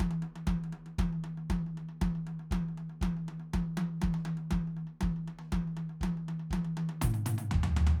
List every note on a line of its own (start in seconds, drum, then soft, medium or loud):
0.00 kick medium
0.00 high tom loud
0.11 high tom medium
0.22 high tom medium
0.36 high tom medium
0.47 kick medium
0.47 high tom loud
0.64 high tom medium
0.72 high tom medium
0.86 high tom medium
0.98 kick medium
0.98 high tom loud
1.12 high tom soft
1.24 high tom medium
1.37 high tom soft
1.50 kick medium
1.50 high tom loud
1.66 high tom soft
1.77 high tom medium
1.89 high tom soft
2.01 kick medium
2.01 high tom loud
2.15 high tom soft
2.27 high tom medium
2.39 high tom soft
2.51 kick medium
2.51 high tom loud
2.68 high tom soft
2.77 high tom medium
2.89 high tom soft
3.01 kick medium
3.01 high tom loud
3.17 high tom soft
3.28 high tom medium
3.40 high tom soft
3.53 kick medium
3.53 high tom loud
3.77 high tom loud
4.02 kick medium
4.02 high tom loud
4.14 high tom medium
4.25 high tom loud
4.37 high tom medium
4.51 kick medium
4.51 high tom loud
4.67 high tom soft
4.77 high tom soft
4.87 high tom soft
5.01 kick medium
5.01 high tom loud
5.16 high tom soft
5.28 high tom medium
5.39 high tom soft
5.52 kick medium
5.52 high tom loud
5.67 high tom soft
5.77 high tom medium
5.89 high tom soft
6.01 kick medium
6.01 high tom loud
6.17 high tom soft
6.28 high tom medium
6.39 high tom soft
6.51 kick medium
6.51 high tom loud
6.65 high tom medium
6.77 high tom loud
6.89 high tom medium
7.01 kick medium
7.01 mid tom loud
7.14 mid tom medium
7.26 mid tom loud
7.38 mid tom medium
7.51 kick medium
7.51 floor tom loud
7.63 floor tom loud
7.76 floor tom loud
7.87 floor tom loud